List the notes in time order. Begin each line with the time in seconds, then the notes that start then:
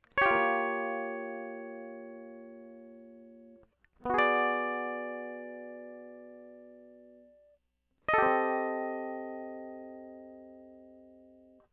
0.18 C#5
0.22 G4
0.27 F4
0.32 A#3
4.06 B3
4.11 F#4
4.15 G#4
4.19 D5
8.09 D#5
8.14 A4
8.19 G4
8.23 C4